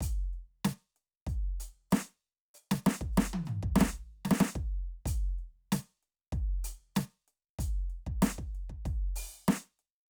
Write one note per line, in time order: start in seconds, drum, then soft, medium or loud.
0.01 closed hi-hat loud
0.01 kick medium
0.34 closed hi-hat soft
0.65 closed hi-hat medium
0.65 snare loud
0.97 closed hi-hat soft
1.27 closed hi-hat soft
1.27 kick medium
1.61 open hi-hat loud
1.91 closed hi-hat medium
1.91 snare loud
1.91 hi-hat pedal soft
2.55 hi-hat pedal medium
2.72 snare loud
2.84 snare loud
2.84 hi-hat pedal soft
3.01 kick medium
3.13 hi-hat pedal soft
3.18 snare loud
3.34 high tom loud
3.46 hi-hat pedal soft
3.46 mid tom medium
3.63 kick medium
3.76 snare loud
3.81 snare loud
4.25 snare medium
4.31 snare loud
4.41 snare loud
4.56 kick medium
5.06 closed hi-hat loud
5.06 kick medium
5.39 closed hi-hat soft
5.73 closed hi-hat loud
5.73 snare loud
6.03 closed hi-hat soft
6.33 kick medium
6.33 closed hi-hat soft
6.65 open hi-hat loud
6.96 snare loud
6.96 closed hi-hat medium
6.96 hi-hat pedal medium
7.28 closed hi-hat soft
7.59 closed hi-hat loud
7.59 kick medium
7.90 closed hi-hat soft
8.07 kick medium
8.23 closed hi-hat loud
8.23 snare loud
8.39 kick medium
8.55 closed hi-hat soft
8.70 kick soft
8.86 kick medium
8.86 closed hi-hat soft
9.16 open hi-hat loud
9.48 snare loud
9.48 hi-hat pedal medium
9.79 closed hi-hat soft